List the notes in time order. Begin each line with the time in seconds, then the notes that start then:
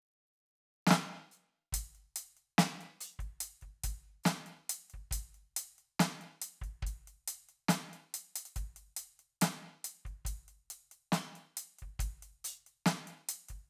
0.87 snare
0.91 snare
1.31 hi-hat pedal
1.72 kick, closed hi-hat
1.95 closed hi-hat
2.16 closed hi-hat
2.37 closed hi-hat
2.58 snare, closed hi-hat
2.81 closed hi-hat
3.01 closed hi-hat
3.19 kick, closed hi-hat
3.40 closed hi-hat
3.61 kick, closed hi-hat
3.83 kick, open hi-hat
4.24 snare, closed hi-hat, hi-hat pedal
4.46 closed hi-hat
4.69 closed hi-hat
4.90 kick, closed hi-hat
5.11 kick, closed hi-hat
5.34 closed hi-hat
5.56 closed hi-hat
5.78 closed hi-hat
5.99 snare, closed hi-hat
6.21 closed hi-hat
6.42 closed hi-hat
6.61 kick, closed hi-hat
6.82 kick
6.87 closed hi-hat
7.07 closed hi-hat
7.27 closed hi-hat
7.49 closed hi-hat
7.68 snare, closed hi-hat
7.93 closed hi-hat
8.14 closed hi-hat
8.36 closed hi-hat
8.45 closed hi-hat
8.56 kick, closed hi-hat
8.76 closed hi-hat
8.96 closed hi-hat
9.19 closed hi-hat
9.41 snare, closed hi-hat
9.84 closed hi-hat
10.05 kick, closed hi-hat
10.25 kick, closed hi-hat
10.48 closed hi-hat
10.70 closed hi-hat
10.91 closed hi-hat
11.12 snare, closed hi-hat
11.35 closed hi-hat
11.57 closed hi-hat
11.79 kick, closed hi-hat
11.99 kick, closed hi-hat
12.22 closed hi-hat
12.44 closed hi-hat
12.66 closed hi-hat
12.86 snare, closed hi-hat
12.94 snare
13.07 closed hi-hat
13.29 closed hi-hat
13.49 kick, closed hi-hat